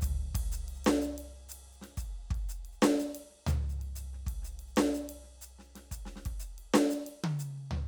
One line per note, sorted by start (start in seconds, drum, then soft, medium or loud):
0.01 kick medium
0.01 hi-hat pedal medium
0.01 ride medium
0.35 kick medium
0.35 ride loud
0.51 snare soft
0.51 hi-hat pedal medium
0.68 ride soft
0.75 hi-hat pedal soft
0.85 snare loud
0.85 ride medium
1.02 hi-hat pedal medium
1.18 ride medium
1.35 snare soft
1.49 hi-hat pedal medium
1.49 ride medium
1.64 snare soft
1.72 hi-hat pedal soft
1.81 snare soft
1.81 ride soft
1.97 kick soft
1.97 hi-hat pedal medium
1.97 ride soft
2.19 snare soft
2.30 kick medium
2.30 ride soft
2.49 snare soft
2.49 hi-hat pedal medium
2.65 ride soft
2.72 hi-hat pedal soft
2.82 snare loud
2.82 ride soft
2.99 hi-hat pedal medium
3.15 ride medium
3.30 snare soft
3.36 snare soft
3.47 floor tom loud
3.47 hi-hat pedal medium
3.61 snare soft
3.69 hi-hat pedal soft
3.79 snare soft
3.79 ride soft
3.95 hi-hat pedal medium
3.95 ride medium
4.13 snare soft
4.26 kick medium
4.26 ride medium
4.42 snare soft
4.42 hi-hat pedal medium
4.47 snare soft
4.59 ride soft
4.67 hi-hat pedal soft
4.76 snare loud
4.76 ride medium
4.94 hi-hat pedal medium
5.09 ride medium
5.23 snare soft
5.41 hi-hat pedal medium
5.41 ride soft
5.59 snare soft
5.59 hi-hat pedal soft
5.75 snare soft
5.75 ride soft
5.91 kick soft
5.91 hi-hat pedal medium
5.91 ride soft
6.05 snare soft
6.16 snare soft
6.25 kick medium
6.25 ride medium
6.40 snare soft
6.40 hi-hat pedal medium
6.58 ride soft
6.74 snare loud
6.90 hi-hat pedal medium
7.07 ride medium
7.24 high tom loud
7.39 hi-hat pedal medium
7.39 ride soft
7.56 snare soft
7.71 floor tom loud